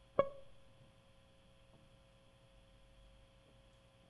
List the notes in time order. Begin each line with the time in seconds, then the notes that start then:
0.19 C#5